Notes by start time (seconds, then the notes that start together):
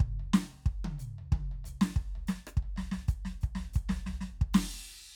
0.01 kick, floor tom
0.20 floor tom
0.34 snare, hi-hat pedal
0.52 floor tom
0.67 kick, floor tom
0.85 high tom
0.99 floor tom, hi-hat pedal
1.19 floor tom
1.33 kick, high tom
1.52 floor tom
1.65 floor tom, hi-hat pedal
1.82 snare
1.97 kick, floor tom
2.16 floor tom
2.28 snare, hi-hat pedal
2.48 cross-stick
2.58 kick
2.63 floor tom
2.77 snare, floor tom
2.92 snare, floor tom
3.09 kick, hi-hat pedal
3.26 snare, floor tom
3.42 kick, hi-hat pedal
3.56 snare, floor tom
3.74 kick, hi-hat pedal
3.90 snare, floor tom
4.07 snare, floor tom
4.14 kick
4.22 snare, floor tom
4.42 kick
4.55 snare, crash